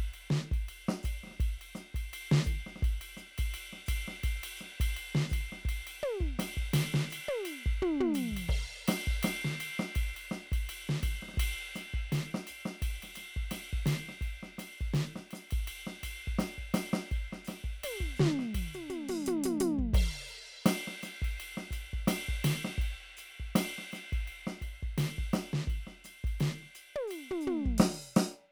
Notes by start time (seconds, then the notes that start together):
0.13 ride
0.30 snare
0.51 kick, ride
0.68 ride
0.88 snare
1.03 kick, hi-hat pedal, ride
1.23 snare
1.27 snare
1.31 snare
1.40 kick, ride
1.61 ride
1.75 snare, hi-hat pedal
1.94 kick, ride
2.13 ride
2.31 snare
2.44 kick, hi-hat pedal, ride
2.66 snare
2.76 snare
2.82 kick, ride
3.01 ride
3.17 snare, hi-hat pedal
3.38 kick, ride
3.54 ride
3.73 snare
3.86 kick, hi-hat pedal, ride
4.08 snare
4.23 kick, ride
4.43 ride
4.57 snare, hi-hat pedal
4.80 kick, ride
4.96 ride
5.15 snare
5.29 kick, hi-hat pedal, ride
5.52 snare
5.65 kick, ride
5.87 ride
6.03 high tom
6.20 kick
6.39 snare, ride
6.57 kick
6.73 snare, ride
6.94 snare
7.10 hi-hat pedal, ride
7.28 high tom
7.45 hi-hat pedal, ride
7.66 kick
7.81 floor tom
8.00 floor tom
8.14 hi-hat pedal, ride
8.31 kick
8.36 ride
8.48 kick, crash
8.57 kick
8.88 snare, ride
9.07 kick
9.23 snare, ride
9.44 snare
9.48 snare
9.60 hi-hat pedal, ride
9.79 snare
9.95 kick, ride
10.16 ride
10.31 snare
10.52 kick, ride
10.69 ride
10.89 snare
11.03 kick, ride
11.22 snare
11.29 snare
11.34 kick, snare
11.39 ride
11.75 snare, hi-hat pedal, ride
11.94 kick
12.12 snare, ride
12.34 snare
12.47 kick, hi-hat pedal, ride
12.65 snare
12.82 kick, ride
13.02 snare, ride
13.14 snare, hi-hat pedal, ride
13.36 kick
13.51 snare, ride
13.73 kick
13.86 snare, ride
14.09 snare
14.21 kick, ride
14.43 snare
14.58 snare, hi-hat pedal, ride
14.81 kick, ride
14.94 snare, ride
15.16 snare
15.31 snare, ride
15.35 hi-hat pedal
15.51 kick, ride
15.67 ride
15.87 snare
16.03 kick, hi-hat pedal, ride
16.27 kick
16.39 snare, ride
16.58 kick
16.74 snare, hi-hat pedal, ride
16.93 snare
17.11 kick, ride
17.33 snare
17.45 snare, hi-hat pedal, ride
17.64 kick
17.83 high tom, ride
18.00 kick
18.16 snare, floor tom, hi-hat pedal
18.39 snare
18.54 kick, ride
18.74 open hi-hat, floor tom
18.89 open hi-hat, floor tom
19.08 open hi-hat, floor tom
19.26 open hi-hat, floor tom
19.44 open hi-hat, floor tom
19.60 open hi-hat, floor tom
19.78 kick
19.93 kick, crash, ride
20.27 hi-hat pedal
20.66 snare, ride
20.87 snare
21.03 snare, hi-hat pedal, ride
21.22 kick, ride
21.40 ride
21.57 snare
21.71 kick, hi-hat pedal, ride
21.93 kick
22.07 snare, ride
22.28 kick
22.44 snare, ride
22.65 snare
22.78 kick, ride
23.17 hi-hat pedal, ride
23.40 kick
23.55 snare, ride
23.78 snare
23.92 snare, hi-hat pedal, ride
24.12 kick, ride
24.27 ride
24.47 snare
24.61 kick, ride
24.83 kick
24.98 snare, ride
25.18 kick
25.33 snare, ride
25.53 snare
25.67 kick, ride
25.87 snare
26.04 snare, hi-hat pedal, ride
26.24 kick, ride
26.40 snare, ride
26.63 snare
26.75 hi-hat pedal, ride
26.95 high tom
27.08 hi-hat pedal, ride
27.30 floor tom
27.41 hi-hat pedal
27.46 floor tom
27.65 kick
27.78 open hi-hat, snare
28.16 open hi-hat, snare